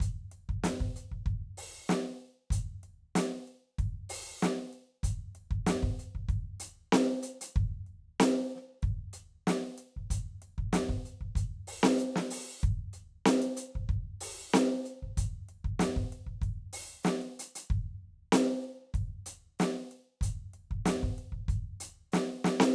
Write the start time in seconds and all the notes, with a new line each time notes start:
0.01 closed hi-hat, kick
0.33 closed hi-hat
0.50 kick
0.65 closed hi-hat, snare
0.81 kick
0.97 closed hi-hat
1.12 kick
1.27 kick
1.58 open hi-hat
1.90 snare, hi-hat pedal
2.51 closed hi-hat, kick
2.84 closed hi-hat
3.16 closed hi-hat, snare
3.48 closed hi-hat
3.79 kick, closed hi-hat
4.10 open hi-hat
4.43 snare, hi-hat pedal
4.74 closed hi-hat
5.04 closed hi-hat, kick
5.36 closed hi-hat
5.52 kick
5.68 closed hi-hat, snare
5.84 kick
6.00 closed hi-hat
6.16 kick
6.29 kick, closed hi-hat
6.61 open hi-hat
6.93 snare, hi-hat pedal
7.24 closed hi-hat
7.42 closed hi-hat
7.57 kick
7.87 closed hi-hat
8.21 closed hi-hat, snare
8.52 snare, closed hi-hat
8.83 kick, closed hi-hat
9.14 open hi-hat
9.48 open hi-hat, snare, hi-hat pedal
9.79 closed hi-hat
9.97 kick
10.11 closed hi-hat, kick
10.43 closed hi-hat
10.59 kick
10.74 closed hi-hat, snare
10.90 kick
11.06 closed hi-hat
11.22 kick
11.36 closed hi-hat, kick
11.68 open hi-hat
11.84 snare
11.99 hi-hat pedal
12.17 snare
12.31 open hi-hat
12.63 kick, closed hi-hat, hi-hat pedal
12.94 closed hi-hat
13.27 closed hi-hat, snare
13.43 closed hi-hat
13.58 closed hi-hat
13.76 kick
13.90 kick
14.22 open hi-hat
14.54 closed hi-hat, snare, hi-hat pedal
14.86 closed hi-hat
15.03 kick
15.18 closed hi-hat, kick
15.50 closed hi-hat
15.65 kick
15.80 closed hi-hat, snare
15.97 kick
16.13 closed hi-hat
16.27 kick
16.43 kick, closed hi-hat
16.74 open hi-hat
17.04 snare, closed hi-hat, hi-hat pedal
17.22 closed hi-hat
17.40 closed hi-hat
17.56 closed hi-hat
17.71 kick
18.33 closed hi-hat, snare
18.65 closed hi-hat
18.95 kick, closed hi-hat
19.27 open hi-hat
19.60 closed hi-hat, snare, hi-hat pedal
19.92 closed hi-hat
20.22 closed hi-hat, kick
20.54 closed hi-hat
20.72 kick
20.87 closed hi-hat, snare
21.04 kick
21.19 closed hi-hat
21.33 kick
21.49 closed hi-hat, kick
21.81 open hi-hat
22.13 snare, hi-hat pedal
22.45 snare
22.61 snare